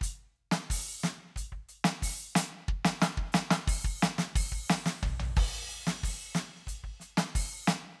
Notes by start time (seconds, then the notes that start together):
0.01 closed hi-hat, kick
0.36 closed hi-hat
0.51 snare
0.70 open hi-hat, kick
1.02 closed hi-hat, snare, hi-hat pedal
1.36 closed hi-hat, kick
1.52 kick
1.69 closed hi-hat
1.84 snare
2.02 open hi-hat, kick
2.32 snare, hi-hat pedal
2.36 closed hi-hat
2.68 kick
2.85 snare
3.00 snare, hi-hat pedal
3.17 kick
3.32 snare, hi-hat pedal
3.51 snare
3.67 open hi-hat, kick
3.84 kick
4.02 snare, hi-hat pedal
4.18 snare
4.35 open hi-hat, kick
4.52 kick
4.70 snare
4.86 snare
5.03 kick, floor tom
5.20 floor tom
5.36 kick, crash
5.68 closed hi-hat, hi-hat pedal
5.72 kick
5.87 snare
6.03 open hi-hat, kick
6.34 closed hi-hat, snare, hi-hat pedal
6.67 closed hi-hat, kick
6.83 kick
6.99 closed hi-hat, snare, hi-hat pedal
7.17 snare
7.35 open hi-hat, kick
7.65 closed hi-hat, snare, hi-hat pedal